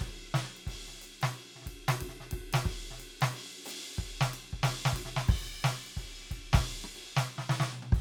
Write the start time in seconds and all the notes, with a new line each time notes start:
0.01 kick, ride
0.34 snare, hi-hat pedal, ride
0.57 ride
0.67 kick, ride
0.88 snare
0.95 snare
1.02 hi-hat pedal, ride
1.22 snare, ride
1.34 ride
1.56 snare
1.61 snare
1.66 kick, hi-hat pedal, ride
1.88 snare, ride
2.01 kick, ride
2.09 snare
2.20 snare
2.31 kick, ride
2.53 snare, ride
2.65 kick, ride
2.91 snare
2.94 snare
2.98 hi-hat pedal, ride
3.21 snare, ride
3.33 ride
3.65 open hi-hat, hi-hat pedal, ride
3.97 kick, ride
4.21 snare
4.27 hi-hat pedal
4.33 ride bell
4.53 kick
4.63 snare, ride
4.85 snare
4.93 kick, ride
5.05 snare
5.17 snare
5.28 kick, crash
5.63 snare, hi-hat pedal, ride
5.87 ride
5.97 kick, ride
6.20 snare
6.25 cross-stick
6.31 kick, hi-hat pedal, ride
6.53 kick, snare, ride
6.84 cross-stick
6.95 hi-hat pedal, ride
7.17 snare
7.38 snare
7.49 snare
7.56 hi-hat pedal
7.60 snare
7.73 high tom
7.83 high tom
7.92 kick, crash